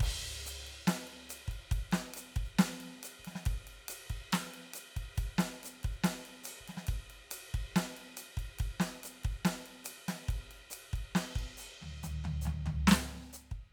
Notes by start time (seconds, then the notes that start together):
0.01 kick, crash, ride
0.46 hi-hat pedal, ride
0.67 ride
0.81 hi-hat pedal
0.88 snare, ride
1.07 ride
1.30 hi-hat pedal, ride
1.48 kick, ride
1.72 kick, ride
1.92 snare, ride
2.14 hi-hat pedal, ride
2.36 kick, ride
2.45 hi-hat pedal
2.59 snare, ride
2.81 ride
3.03 hi-hat pedal, ride
3.19 kick
3.25 snare, ride
3.36 snare
3.46 kick, ride
3.67 ride
3.89 hi-hat pedal, ride
4.10 kick, ride
4.33 snare, ride
4.54 ride
4.74 hi-hat pedal, ride
4.97 kick, ride
5.15 kick, hi-hat pedal, ride
5.39 snare, ride
5.64 hi-hat pedal, ride
5.84 kick, ride
5.92 hi-hat pedal
6.04 snare, ride
6.26 ride
6.44 hi-hat pedal, ride
6.61 kick
6.68 snare, ride
6.77 snare
6.87 kick, ride
7.10 ride
7.31 hi-hat pedal, ride
7.54 kick, ride
7.76 snare, ride
7.97 ride
8.17 hi-hat pedal, ride
8.37 kick, ride
8.59 kick, hi-hat pedal, ride
8.80 snare, ride
9.04 hi-hat pedal, ride
9.24 kick, ride
9.31 hi-hat pedal
9.45 snare, ride
9.66 ride
9.85 hi-hat pedal, ride
10.09 snare, ride
10.29 kick, ride
10.51 ride
10.71 hi-hat pedal, ride
10.93 kick, ride
11.15 snare, ride
11.36 kick, ride
11.58 hi-hat pedal, ride
11.82 floor tom, high tom
12.04 floor tom, hi-hat pedal, high tom
12.24 floor tom, high tom
12.42 hi-hat pedal, high tom
12.47 floor tom
12.66 floor tom, high tom
12.88 snare
12.92 snare
13.33 hi-hat pedal
13.52 kick